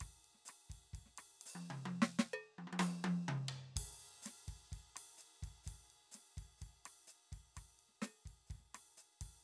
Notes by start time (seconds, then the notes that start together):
0.01 kick, cross-stick, snare, ride
0.25 ride
0.35 snare
0.46 cross-stick, hi-hat pedal, ride
0.70 kick, ride
0.94 kick, ride
0.99 kick
1.06 snare
1.18 cross-stick, ride
1.42 ride
1.46 hi-hat pedal
1.56 high tom
1.71 mid tom
1.86 high tom
2.02 snare
2.19 snare
2.34 percussion
2.59 high tom
2.68 high tom
2.73 high tom
2.80 hi-hat pedal, high tom
3.05 high tom
3.29 mid tom
3.49 floor tom
3.77 kick, ride
3.82 kick
4.23 snare, hi-hat pedal, ride
4.48 kick, ride
4.72 kick, ride
4.96 cross-stick, ride
5.18 hi-hat pedal, ride
5.43 kick, ride
5.48 kick
5.64 kick, hi-hat pedal
5.68 kick, ride
5.91 ride
6.12 snare, hi-hat pedal, ride
6.38 kick, ride
6.59 kick, hi-hat pedal, ride
6.86 cross-stick, ride
7.08 hi-hat pedal, ride
7.33 kick, ride
7.55 kick, cross-stick, hi-hat pedal, ride
7.80 ride
7.89 snare
8.02 snare, hi-hat pedal, ride, percussion
8.26 kick, ride
8.47 kick, hi-hat pedal
8.51 ride
8.56 kick, snare
8.75 cross-stick, snare, ride
8.98 hi-hat pedal, ride
9.22 kick, ride